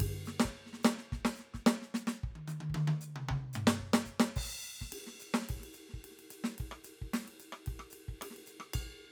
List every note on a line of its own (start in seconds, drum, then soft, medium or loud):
0.01 kick medium
0.01 ride loud
0.09 kick soft
0.14 kick soft
0.26 snare soft
0.26 hi-hat pedal soft
0.40 snare loud
0.45 kick soft
0.45 snare soft
0.55 snare soft
0.61 snare soft
0.64 snare soft
0.67 snare soft
0.74 snare soft
0.80 snare soft
0.80 hi-hat pedal soft
0.85 snare loud
0.98 snare soft
1.13 kick soft
1.13 snare soft
1.19 kick soft
1.25 snare medium
1.36 snare soft
1.36 hi-hat pedal soft
1.54 kick soft
1.54 snare soft
1.67 snare loud
1.82 snare soft
1.95 snare medium
1.95 hi-hat pedal soft
2.08 snare medium
2.24 kick soft
2.31 kick soft
2.36 high tom medium
2.48 hi-hat pedal medium
2.48 high tom medium
2.61 high tom medium
2.70 kick soft
2.75 high tom loud
2.88 high tom loud
3.01 hi-hat pedal medium
3.16 mid tom medium
3.29 kick soft
3.29 mid tom loud
3.37 kick soft
3.54 hi-hat pedal medium
3.54 floor tom medium
3.68 snare loud
3.80 kick soft
3.94 snare loud
4.06 kick soft
4.06 hi-hat pedal soft
4.20 snare loud
4.37 kick medium
4.37 crash loud
4.44 kick soft
4.44 snare soft
4.50 kick soft
4.62 hi-hat pedal medium
4.81 kick soft
4.81 snare soft
4.90 kick soft
4.90 ride loud
5.07 snare soft
5.20 hi-hat pedal medium
5.20 ride medium
5.35 snare medium
5.42 snare soft
5.50 kick soft
5.50 ride medium
5.57 kick soft
5.57 snare soft
5.64 ride medium
5.74 hi-hat pedal soft
5.74 ride soft
5.90 snare soft
5.94 kick soft
6.05 ride medium
6.11 snare soft
6.17 snare soft
6.17 ride soft
6.31 hi-hat pedal medium
6.31 ride medium
6.45 snare medium
6.59 kick soft
6.59 ride medium
6.72 cross-stick medium
6.85 hi-hat pedal medium
6.85 ride medium
7.02 kick soft
7.14 snare medium
7.14 ride medium
7.25 snare soft
7.25 ride medium
7.40 hi-hat pedal soft
7.40 ride medium
7.53 cross-stick medium
7.67 kick soft
7.67 ride medium
7.75 kick soft
7.80 cross-stick medium
7.91 hi-hat pedal soft
7.91 ride medium
8.09 kick soft
8.22 cross-stick medium
8.22 ride medium
8.31 snare soft
8.37 ride soft
8.47 hi-hat pedal soft
8.47 ride soft
8.61 cross-stick medium
8.74 kick medium
8.74 ride bell loud
8.83 kick soft
8.87 kick soft